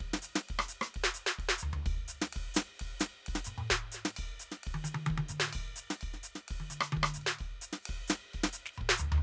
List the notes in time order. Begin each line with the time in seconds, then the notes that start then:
0.01 kick, ride
0.14 snare
0.23 hi-hat pedal, ride
0.36 snare
0.49 kick, ride
0.58 kick, cross-stick
0.69 hi-hat pedal
0.73 ride
0.82 cross-stick
0.90 hi-hat pedal
0.95 kick, ride
1.04 snare
1.15 hi-hat pedal, ride
1.27 snare
1.39 kick, ride
1.49 snare
1.59 hi-hat pedal
1.63 floor tom
1.74 floor tom
1.83 kick, floor tom, ride bell
1.95 kick
2.08 hi-hat pedal, ride
2.22 snare
2.30 hi-hat pedal, ride
2.37 kick
2.55 snare, hi-hat pedal
2.75 hi-hat pedal
2.80 kick, ride
3.00 snare, hi-hat pedal
3.27 kick, ride
3.36 snare
3.45 hi-hat pedal, mid tom
3.58 mid tom
3.71 kick, snare
3.92 snare, hi-hat pedal
4.06 snare
4.14 hi-hat pedal, ride bell
4.19 kick
4.25 kick
4.40 hi-hat pedal, ride
4.52 snare
4.64 kick, ride
4.73 kick, high tom
4.85 hi-hat pedal, high tom
4.95 high tom
5.06 hi-hat pedal, high tom
5.11 kick
5.18 high tom
5.29 hi-hat pedal, mid tom
5.40 snare
5.48 snare
5.53 kick, ride bell
5.76 hi-hat pedal, ride
5.91 snare
5.98 hi-hat pedal, ride bell
6.03 kick
6.14 snare
6.24 hi-hat pedal, ride
6.36 snare
6.49 kick, ride
6.60 high tom
6.71 hi-hat pedal
6.81 cross-stick
6.93 high tom
6.97 kick
7.04 cross-stick
7.14 hi-hat pedal, mid tom
7.22 ride
7.27 snare
7.39 kick, mid tom, ride bell
7.62 hi-hat pedal, ride
7.73 snare
7.83 hi-hat pedal, ride
7.90 kick
8.08 snare, hi-hat pedal
8.34 kick, ride bell
8.44 snare
8.53 hi-hat pedal, ride
8.66 snare
8.74 hi-hat pedal
8.78 kick, mid tom
8.90 snare
8.98 floor tom, hi-hat pedal
9.12 floor tom
9.18 floor tom